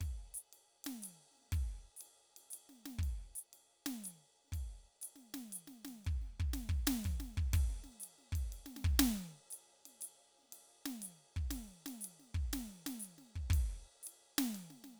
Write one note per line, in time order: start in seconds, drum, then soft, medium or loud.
0.01 kick soft
0.01 ride soft
0.34 hi-hat pedal medium
0.53 ride soft
0.85 snare soft
0.85 ride medium
1.03 hi-hat pedal medium
1.03 ride soft
1.32 snare soft
1.36 snare soft
1.38 snare soft
1.42 snare soft
1.52 kick soft
1.52 ride medium
1.97 hi-hat pedal medium
2.01 ride soft
2.37 ride soft
2.51 hi-hat pedal medium
2.51 ride soft
2.70 snare soft
2.86 snare soft
2.99 kick soft
3.04 ride soft
3.36 hi-hat pedal medium
3.53 ride soft
3.86 snare medium
3.86 ride soft
4.04 hi-hat pedal medium
4.04 ride soft
4.45 snare soft
4.48 snare soft
4.53 kick soft
4.53 ride soft
5.02 hi-hat pedal medium
5.02 ride soft
5.16 snare soft
5.34 snare soft
5.34 ride soft
5.53 hi-hat pedal medium
5.53 ride soft
5.68 snare soft
5.85 snare soft
5.85 ride soft
6.05 kick soft
6.05 ride soft
6.22 snare soft
6.40 kick soft
6.54 snare soft
6.54 ride soft
6.69 kick soft
6.87 snare medium
6.87 ride medium
7.05 kick soft
7.05 ride soft
7.20 snare soft
7.38 kick soft
7.54 kick medium
7.54 ride medium
7.69 snare soft
7.84 snare soft
8.00 hi-hat pedal medium
8.00 ride soft
8.19 snare soft
8.33 kick soft
8.33 ride medium
8.53 ride soft
8.66 snare soft
8.77 snare soft
8.85 kick medium
9.00 snare loud
9.00 ride medium
9.51 hi-hat pedal medium
9.51 ride soft
9.86 snare soft
9.86 ride soft
10.01 hi-hat pedal medium
10.01 ride soft
10.39 snare soft
10.42 snare soft
10.45 snare soft
10.53 ride medium
10.86 snare medium
10.86 ride soft
11.02 hi-hat pedal medium
11.02 ride soft
11.37 kick soft
11.51 snare soft
11.51 ride medium
11.86 snare soft
11.86 ride soft
12.01 hi-hat pedal medium
12.01 ride soft
12.20 snare soft
12.35 kick soft
12.53 snare medium
12.53 ride medium
12.87 snare medium
12.87 ride medium
13.00 hi-hat pedal medium
13.05 ride soft
13.18 snare soft
13.36 kick soft
13.50 kick medium
13.50 ride medium
14.03 hi-hat pedal medium
14.03 ride soft
14.39 snare medium
14.39 ride medium
14.55 ride soft
14.71 snare soft
14.84 snare soft